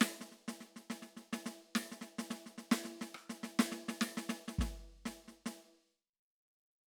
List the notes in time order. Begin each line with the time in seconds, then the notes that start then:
0.01 snare
0.21 snare
0.32 snare
0.48 snare
0.61 snare
0.76 snare
0.90 snare
1.02 snare
1.17 snare
1.33 snare
1.46 snare
1.75 snare
1.92 snare
2.01 snare
2.19 snare
2.30 snare
2.46 snare
2.58 snare
2.71 snare
2.85 snare
3.01 snare
3.15 cross-stick
3.30 snare
3.43 snare
3.59 snare
3.72 snare
3.88 snare
4.01 snare
4.17 snare
4.29 snare
4.48 snare
4.59 kick, snare
5.06 snare
5.28 snare
5.46 snare